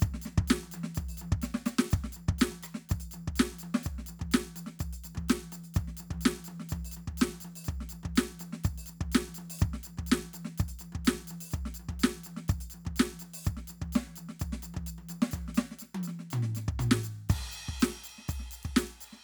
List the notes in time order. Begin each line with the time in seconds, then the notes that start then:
0.01 kick, high tom, percussion
0.15 snare
0.23 snare, percussion
0.28 high tom
0.39 kick, high tom
0.48 snare, percussion
0.64 high tom
0.72 high tom, percussion
0.84 snare
0.96 kick, percussion
1.00 high tom
1.09 percussion
1.18 percussion
1.22 high tom
1.33 kick
1.43 snare, percussion
1.55 snare
1.67 snare, percussion
1.79 snare
1.91 kick, high tom, percussion
2.05 snare
2.13 percussion
2.17 high tom
2.29 kick, high tom
2.39 snare, percussion
2.53 high tom
2.64 high tom, percussion
2.75 snare
2.90 kick, high tom, percussion
3.01 percussion
3.12 high tom, percussion
3.29 kick
3.37 snare, percussion
3.53 high tom
3.60 percussion
3.64 high tom
3.75 snare
3.84 kick, high tom, percussion
3.99 snare
4.07 high tom, percussion
4.20 kick, high tom
4.32 snare, percussion
4.44 high tom
4.57 high tom, percussion
4.67 snare
4.80 kick, high tom, percussion
4.94 percussion
5.05 high tom, percussion
5.16 kick, high tom
5.30 snare, percussion
5.42 high tom
5.53 high tom, percussion
5.65 percussion
5.75 kick, high tom, percussion
5.88 snare
5.98 high tom, percussion
6.12 kick, high tom
6.22 percussion
6.26 snare
6.37 high tom
6.45 high tom, percussion
6.61 snare
6.70 kick, percussion
6.74 high tom
6.86 percussion
6.92 percussion
6.98 high tom
7.08 kick, high tom
7.18 percussion
7.22 snare
7.34 high tom
7.41 percussion
7.46 high tom
7.56 percussion
7.65 kick, percussion
7.70 high tom
7.81 snare
7.90 high tom, percussion
8.04 kick, high tom
8.17 snare, percussion
8.29 high tom
8.40 high tom, percussion
8.54 snare
8.65 kick, high tom, percussion
8.79 percussion
8.87 high tom, percussion
9.02 kick, high tom
9.13 snare, percussion
9.28 high tom
9.35 high tom, percussion
9.51 percussion
9.60 kick, percussion
9.64 high tom
9.74 snare
9.84 high tom, percussion
9.98 kick, high tom
10.07 percussion
10.13 snare
10.23 high tom
10.34 high tom, percussion
10.46 snare
10.59 kick, high tom, percussion
10.69 percussion
10.80 high tom, percussion
10.93 kick, high tom
11.06 snare, percussion
11.20 high tom
11.28 high tom, percussion
11.42 percussion
11.52 kick, percussion
11.56 high tom
11.66 snare
11.75 percussion
11.80 high tom
11.90 kick, high tom
12.00 percussion
12.04 snare
12.16 high tom
12.25 high tom, percussion
12.37 snare
12.49 kick, high tom, percussion
12.61 percussion
12.71 percussion
12.75 high tom
12.86 kick, high tom
12.97 snare, percussion
13.12 high tom
13.20 high tom, percussion
13.35 percussion
13.46 kick, high tom, percussion
13.58 snare
13.68 high tom, percussion
13.83 kick, high tom
13.93 snare, percussion
14.08 high tom
14.17 high tom, percussion
14.30 snare
14.41 kick, high tom, percussion
14.53 snare
14.63 high tom, percussion
14.75 kick, high tom
14.87 percussion
14.99 high tom
15.10 high tom, percussion
15.23 snare
15.32 kick, percussion
15.36 high tom
15.49 snare
15.55 snare, percussion
15.72 snare
15.80 snare, percussion
15.96 high tom
16.04 percussion
16.09 snare
16.20 snare
16.31 floor tom, percussion
16.43 snare
16.56 snare, percussion
16.69 kick
16.80 floor tom, percussion
16.92 snare
17.04 percussion
17.30 kick, percussion, crash, ride
17.53 percussion
17.69 kick
17.81 snare, percussion
17.86 ride
18.05 percussion
18.10 ride
18.19 snare
18.29 kick, ride, percussion
18.40 snare
18.52 ride, percussion
18.64 kick, ride
18.77 snare, percussion
18.88 ride
19.01 percussion, ride
19.13 snare